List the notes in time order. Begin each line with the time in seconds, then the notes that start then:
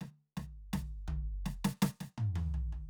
0.01 snare, floor tom
0.37 snare, floor tom
0.73 snare, floor tom
1.08 floor tom
1.46 snare
1.65 snare
1.82 snare
2.01 snare
2.18 mid tom
2.36 open hi-hat, high tom
2.54 floor tom
2.73 floor tom